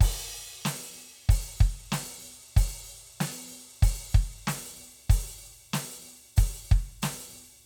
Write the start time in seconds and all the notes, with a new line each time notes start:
0.01 open hi-hat, kick, crash
0.65 open hi-hat, snare
0.74 snare
1.29 open hi-hat, kick
1.61 kick
1.92 open hi-hat, snare
2.57 open hi-hat, kick
3.21 open hi-hat, snare
3.83 open hi-hat, kick
4.15 kick
4.48 open hi-hat, snare
5.10 open hi-hat, kick
5.33 kick
5.74 open hi-hat, snare
6.37 open hi-hat, kick
6.72 kick
7.03 open hi-hat, snare